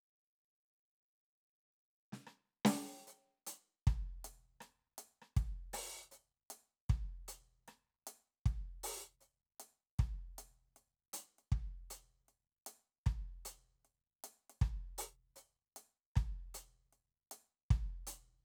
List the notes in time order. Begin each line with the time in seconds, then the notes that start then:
2.12 snare
2.27 cross-stick
2.65 open hi-hat, snare
3.07 closed hi-hat, hi-hat pedal
3.47 closed hi-hat
3.87 kick, cross-stick, closed hi-hat
4.25 closed hi-hat
4.61 cross-stick, closed hi-hat
4.98 closed hi-hat
5.22 cross-stick
5.37 kick, closed hi-hat
5.73 open hi-hat, cross-stick
6.11 closed hi-hat, hi-hat pedal
6.50 closed hi-hat
6.89 kick, cross-stick, closed hi-hat
7.28 closed hi-hat
7.68 cross-stick, closed hi-hat
8.07 closed hi-hat
8.46 kick, closed hi-hat
8.83 open hi-hat
9.21 closed hi-hat, hi-hat pedal
9.60 closed hi-hat
9.99 kick, cross-stick, closed hi-hat
10.38 closed hi-hat
10.76 closed hi-hat
11.13 closed hi-hat
11.38 closed hi-hat
11.52 kick
11.90 closed hi-hat
12.28 closed hi-hat
12.66 closed hi-hat
13.06 kick, cross-stick, closed hi-hat
13.45 closed hi-hat
13.85 closed hi-hat
14.24 closed hi-hat
14.50 closed hi-hat
14.61 kick, cross-stick
14.98 open hi-hat
15.36 closed hi-hat, hi-hat pedal
15.76 closed hi-hat
16.16 kick, cross-stick, closed hi-hat
16.54 closed hi-hat
16.93 closed hi-hat
17.31 closed hi-hat
17.71 kick, cross-stick, closed hi-hat
18.07 open hi-hat